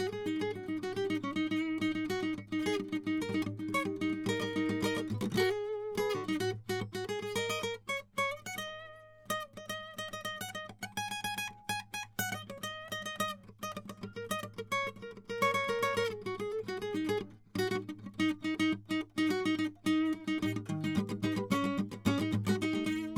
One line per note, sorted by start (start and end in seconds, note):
0.00 0.11 F#4
0.14 0.32 G#4
0.27 0.45 D#4
0.42 0.51 G#4
0.52 0.71 F#4
0.69 0.81 D#4
0.84 0.95 F#4
0.97 1.11 G4
1.11 1.22 D#4
1.24 1.35 C#4
1.37 1.49 D#4
1.52 1.63 D#4
1.83 1.94 D#4
1.96 2.10 D#4
2.10 2.30 F#4
2.24 2.36 D#4
2.53 3.02 D#4
2.67 2.80 G#4
3.08 3.24 D#4
3.23 3.40 A#4
3.35 3.43 D#4
3.44 3.56 D4
3.60 3.98 D#4
3.75 3.88 C#5
4.02 4.54 D#4
4.30 4.41 A#4
4.40 4.85 A#4
4.40 4.47 D#5
4.48 4.63 D#5
4.57 4.70 D#4
4.71 5.11 D#4
4.85 4.96 A#4
4.85 4.93 D#5
4.96 5.05 A#4
5.38 5.50 F#4
5.38 5.55 A#4
5.50 5.69 G#4
5.98 6.09 G#4
6.09 6.28 F#4
6.29 6.41 D#4
6.41 6.55 F#4
6.70 6.84 F#4
6.96 7.07 F#4
7.10 7.24 G#4
7.36 7.51 A#4
7.36 7.46 D#5
7.50 7.60 A#4
7.50 7.64 D#5
7.64 7.80 A#4
7.90 8.04 C#5
8.19 8.36 C#5
8.47 8.60 F#5
8.59 8.82 D#5
9.31 9.47 D#5
9.58 9.70 D#5
9.70 9.96 D#5
9.99 10.11 D#5
10.14 10.25 D#5
10.26 10.43 D#5
10.41 10.53 F#5
10.56 10.70 D#5
10.84 10.94 G#5
10.98 11.08 G#5
11.09 11.15 G#5
11.25 11.34 G#5
11.35 11.50 G#5
11.70 11.84 G#5
11.95 12.06 G#5
12.20 12.38 F#5
12.35 12.44 D#5
12.51 12.60 C#5
12.64 12.90 D#5
12.93 13.07 D#5
13.07 13.18 D#5
13.21 13.36 D#5
13.64 13.75 D#5
13.78 13.90 D5
13.90 14.04 D#5
14.17 14.31 A#4
14.72 14.93 C#5
15.04 15.14 A#4
15.30 15.56 A#4
15.43 15.53 C#5
15.55 15.65 A#4
15.55 15.72 C#5
15.70 15.84 A#4
15.83 15.95 A#4
15.83 15.95 C#5
15.95 16.08 A#4
15.95 16.08 C#5
16.08 16.17 A4
16.27 16.38 F#4
16.41 16.52 G#4
16.52 16.62 A4
16.69 16.80 F#4
16.83 16.97 G#4
16.95 17.12 D#4
17.10 17.20 G#4
17.59 17.70 F#4
18.20 18.35 D#4
18.45 18.57 D#4
18.60 18.77 D#4
18.91 19.06 D#4
19.18 19.35 D#4
19.31 19.58 F#4
19.46 19.57 D#4
19.60 19.70 D#4
19.87 20.15 D#4
20.28 20.41 D#4
20.43 20.53 D#4
20.70 21.04 D#3
20.85 21.03 D#4
21.25 21.37 D#4
21.52 21.66 C#4
21.66 21.80 C#4
22.07 22.19 C#4
22.20 22.42 D#4
22.62 22.86 D#4
22.87 22.99 D#4